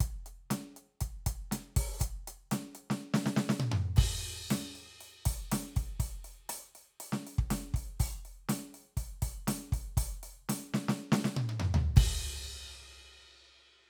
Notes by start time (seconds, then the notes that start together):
0.01 kick, closed hi-hat
0.27 closed hi-hat
0.51 snare, closed hi-hat
0.77 closed hi-hat
1.01 kick, closed hi-hat
1.27 kick, closed hi-hat
1.52 snare, closed hi-hat
1.77 kick, open hi-hat
2.00 kick, closed hi-hat, hi-hat pedal
2.28 closed hi-hat
2.52 snare, open hi-hat
2.76 open hi-hat
2.91 snare
3.14 snare
3.26 snare
3.37 snare
3.50 snare
3.60 high tom
3.72 mid tom
3.97 kick, crash
4.51 snare, open hi-hat
4.76 open hi-hat
5.01 open hi-hat
5.26 kick, open hi-hat
5.52 snare, open hi-hat
5.77 kick, open hi-hat
6.00 kick, open hi-hat
6.25 open hi-hat
6.50 cross-stick, open hi-hat
6.76 open hi-hat
7.01 open hi-hat
7.13 snare
7.27 open hi-hat
7.39 kick
7.51 snare, open hi-hat
7.74 kick, open hi-hat
8.00 open hi-hat, kick
8.26 open hi-hat
8.49 snare, open hi-hat
8.75 open hi-hat
8.97 kick, open hi-hat
9.23 kick, open hi-hat
9.48 snare, open hi-hat
9.73 kick, open hi-hat
9.98 kick, open hi-hat
10.24 open hi-hat
10.49 snare, open hi-hat
10.74 snare
10.89 snare
11.12 snare
11.25 snare
11.37 high tom
11.50 high tom
11.60 mid tom
11.75 floor tom
11.97 kick, ride, crash